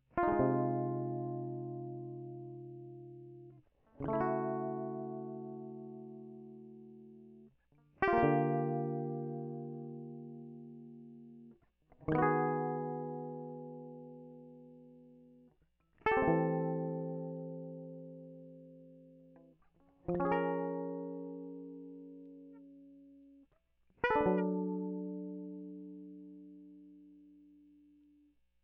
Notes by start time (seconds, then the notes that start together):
0.18 F4
0.24 D#4
0.28 G#3
0.41 C3
4.02 C#3
4.06 E3 A3
4.13 E4
4.21 F#4
8.03 G4
8.08 F4
8.14 A#3
8.24 D3
12.09 D#3
12.15 B3 F#4
12.23 G#4
16.07 A4
16.12 G4
16.18 C4
16.24 A3
16.29 E3
20.10 F3
20.20 C#4
20.25 G#4
20.32 A#4
24.04 B4
24.11 A4
24.16 D4
24.22 A3
24.27 F#3
24.41 A#4